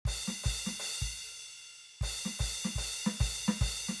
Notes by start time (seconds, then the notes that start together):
0.06 kick, crash
0.28 snare
0.43 kick, crash
0.67 snare
0.71 snare
0.79 crash
1.02 kick
2.01 kick, crash
2.26 snare
2.39 kick, crash
2.65 snare
2.76 kick, crash
2.81 kick
3.07 snare
3.20 kick, crash
3.48 snare
3.61 kick, crash
3.89 snare